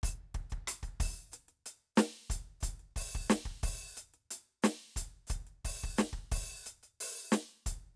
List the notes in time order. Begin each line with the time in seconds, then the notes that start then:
0.03 open hi-hat, kick
0.34 kick, closed hi-hat
0.50 closed hi-hat, kick
0.68 closed hi-hat, cross-stick
0.83 closed hi-hat, kick
1.00 open hi-hat, kick
1.32 closed hi-hat, hi-hat pedal
1.48 closed hi-hat
1.66 open hi-hat
1.96 closed hi-hat, snare, hi-hat pedal
2.13 closed hi-hat
2.30 open hi-hat, kick
2.60 closed hi-hat, kick, hi-hat pedal
2.79 closed hi-hat
2.96 open hi-hat, kick
3.15 kick
3.27 closed hi-hat, snare, hi-hat pedal
3.45 kick, closed hi-hat
3.63 open hi-hat, kick
3.96 closed hi-hat, hi-hat pedal
4.14 closed hi-hat
4.31 open hi-hat
4.62 closed hi-hat, snare, hi-hat pedal
4.79 closed hi-hat
4.96 open hi-hat, kick
5.27 closed hi-hat, kick, hi-hat pedal
5.47 closed hi-hat
5.65 open hi-hat, kick
5.83 kick
5.96 closed hi-hat, snare, hi-hat pedal
6.13 kick, closed hi-hat
6.32 open hi-hat, kick
6.65 closed hi-hat, hi-hat pedal
6.83 closed hi-hat
7.00 open hi-hat
7.31 closed hi-hat, snare, hi-hat pedal
7.49 closed hi-hat
7.66 closed hi-hat, kick